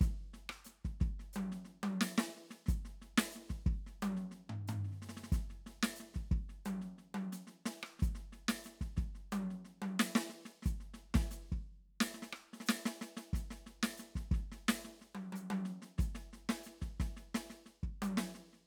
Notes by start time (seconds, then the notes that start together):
0.01 kick, snare, hi-hat pedal
0.34 snare
0.49 cross-stick
0.65 snare, hi-hat pedal
0.85 kick, snare
1.00 kick, snare
1.19 snare
1.33 hi-hat pedal, high tom
1.52 snare
1.65 snare
1.83 high tom
2.01 snare, hi-hat pedal
2.18 snare
2.36 snare
2.51 snare
2.66 kick, snare, hi-hat pedal
2.85 snare
3.02 snare
3.18 snare
3.32 snare, hi-hat pedal
3.49 kick, snare
3.66 kick
3.73 snare
3.87 snare
4.02 hi-hat pedal, high tom
4.17 snare
4.31 snare
4.49 floor tom
4.68 floor tom, hi-hat pedal
4.84 snare
4.88 snare
4.92 snare
4.96 snare
5.02 snare
5.09 snare
5.17 snare
5.24 snare
5.32 kick, snare, hi-hat pedal
5.50 snare
5.66 snare
5.83 snare
5.96 snare, hi-hat pedal
6.14 kick, snare
6.31 kick
6.49 snare
6.65 hi-hat pedal, high tom
6.81 snare
6.98 snare
7.14 high tom
7.32 snare, hi-hat pedal
7.47 snare
7.66 snare
7.83 cross-stick
7.99 kick, snare, hi-hat pedal
8.15 snare
8.33 snare
8.48 snare
8.64 snare, hi-hat pedal
8.81 kick, snare
8.97 kick, snare
9.15 snare
9.32 hi-hat pedal, high tom
9.50 snare
9.65 snare
9.82 high tom
9.99 snare, hi-hat pedal
10.15 snare
10.30 snare
10.45 snare
10.63 kick, snare, hi-hat pedal
10.80 snare
10.94 snare
11.14 kick, snare
11.31 snare, hi-hat pedal
11.52 kick
12.00 snare, hi-hat pedal
12.14 snare
12.22 snare
12.33 cross-stick
12.53 snare
12.60 snare
12.66 snare, hi-hat pedal
12.86 snare
13.01 snare
13.17 snare
13.33 kick, snare, hi-hat pedal
13.51 snare
13.66 snare
13.83 snare
13.98 snare, hi-hat pedal
14.16 kick, snare
14.31 kick, snare
14.52 snare
14.68 snare, hi-hat pedal
14.85 snare
15.01 snare
15.15 high tom
15.33 hi-hat pedal, high tom
15.50 high tom
15.65 snare
15.82 snare
15.98 kick, snare, hi-hat pedal
16.15 snare
16.33 snare
16.49 snare
16.63 snare, hi-hat pedal
16.82 kick, snare
17.00 kick, snare
17.17 snare
17.35 snare, hi-hat pedal
17.50 snare
17.66 snare
17.83 kick
18.02 hi-hat pedal, high tom
18.17 snare
18.35 snare
18.53 snare